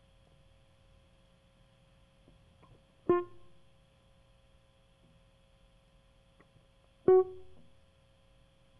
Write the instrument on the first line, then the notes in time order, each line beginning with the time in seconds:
electric guitar
3.10 F4
7.08 F#4